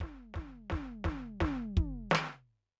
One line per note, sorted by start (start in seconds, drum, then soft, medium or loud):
0.00 kick soft
0.00 snare soft
0.00 floor tom soft
0.34 kick soft
0.34 snare soft
0.34 floor tom soft
0.70 kick soft
0.70 snare medium
0.70 floor tom medium
1.04 kick soft
1.04 snare medium
1.04 floor tom medium
1.40 kick medium
1.40 snare medium
1.40 floor tom medium
1.76 kick medium
1.76 floor tom medium
2.10 snare loud
2.10 hi-hat pedal loud
2.15 snare loud